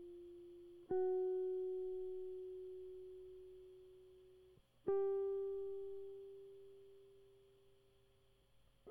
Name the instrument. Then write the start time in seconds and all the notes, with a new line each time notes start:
electric guitar
0.92 F#4
4.89 G4